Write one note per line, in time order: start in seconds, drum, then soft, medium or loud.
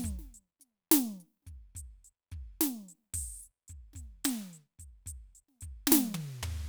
0.01 kick soft
0.01 hi-hat pedal medium
0.06 closed hi-hat medium
0.11 kick soft
0.19 snare soft
0.35 closed hi-hat soft
0.60 snare soft
0.60 closed hi-hat soft
0.92 open hi-hat medium
0.92 snare loud
0.92 hi-hat pedal medium
1.20 closed hi-hat soft
1.43 snare soft
1.47 kick soft
1.47 snare soft
1.47 closed hi-hat soft
1.76 closed hi-hat medium
1.76 kick soft
1.76 hi-hat pedal soft
2.05 closed hi-hat soft
2.32 kick soft
2.32 closed hi-hat soft
2.61 closed hi-hat medium
2.61 snare medium
2.89 closed hi-hat soft
2.89 snare soft
3.14 open hi-hat loud
3.14 kick soft
3.40 closed hi-hat soft
3.40 hi-hat pedal medium
3.68 closed hi-hat soft
3.68 kick soft
3.94 closed hi-hat soft
3.94 kick soft
3.94 snare soft
4.25 closed hi-hat loud
4.25 snare loud
4.53 closed hi-hat soft
4.79 closed hi-hat medium
4.79 kick soft
5.07 closed hi-hat medium
5.07 kick soft
5.35 closed hi-hat soft
5.49 snare soft
5.61 closed hi-hat medium
5.61 kick soft
5.87 snare loud
5.92 snare loud
6.01 snare soft
6.15 mid tom medium
6.34 snare soft
6.43 floor tom loud